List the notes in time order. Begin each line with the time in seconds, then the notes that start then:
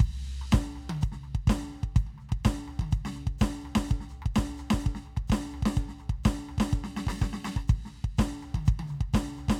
0.01 kick, hi-hat pedal, crash
0.24 hi-hat pedal
0.42 floor tom
0.52 kick, snare, hi-hat pedal
0.65 floor tom
0.75 floor tom, hi-hat pedal
0.90 high tom
1.02 kick, floor tom, hi-hat pedal
1.13 snare
1.23 floor tom, hi-hat pedal
1.35 kick, floor tom
1.48 kick, snare, hi-hat pedal
1.62 floor tom
1.71 hi-hat pedal
1.84 kick
1.96 kick, floor tom, hi-hat pedal
2.07 high tom
2.18 floor tom, hi-hat pedal
2.30 kick, floor tom
2.45 kick, snare, hi-hat pedal
2.56 floor tom
2.66 floor tom, hi-hat pedal
2.80 kick, high tom
2.92 kick, floor tom, hi-hat pedal
3.06 snare
3.13 floor tom, hi-hat pedal
3.27 kick
3.39 kick, snare, hi-hat pedal
3.55 floor tom
3.61 hi-hat pedal
3.66 floor tom
3.76 kick, snare
3.88 kick, floor tom, hi-hat pedal
4.01 snare
4.10 floor tom, hi-hat pedal
4.23 kick, floor tom
4.35 kick, snare, hi-hat pedal
4.49 floor tom
4.58 floor tom, hi-hat pedal
4.71 kick, snare
4.81 floor tom, hi-hat pedal
4.87 kick
4.96 snare
5.02 hi-hat pedal
5.06 floor tom
5.17 kick, floor tom
5.28 kick, hi-hat pedal
5.33 snare
5.43 floor tom
5.50 hi-hat pedal
5.55 floor tom
5.63 kick, snare
5.76 kick, hi-hat pedal
5.81 floor tom
5.89 snare
5.99 floor tom, hi-hat pedal
6.10 kick, floor tom
6.24 kick, snare, hi-hat pedal
6.37 floor tom
6.46 floor tom, hi-hat pedal
6.59 kick, snare
6.71 kick, floor tom, hi-hat pedal
6.85 snare
6.93 hi-hat pedal
6.97 snare
7.07 kick, snare
7.19 kick, snare, hi-hat pedal
7.34 snare
7.42 snare, hi-hat pedal
7.57 kick, cross-stick
7.68 kick, hi-hat pedal, crash
7.86 snare
7.91 hi-hat pedal
7.96 floor tom
8.05 kick
8.18 kick, snare, hi-hat pedal
8.32 floor tom
8.41 floor tom, hi-hat pedal
8.55 kick, high tom
8.66 kick, floor tom, hi-hat pedal
8.80 high tom
8.88 floor tom, hi-hat pedal
9.01 kick, floor tom
9.14 kick, snare, hi-hat pedal
9.27 floor tom
9.36 floor tom, hi-hat pedal
9.49 kick, snare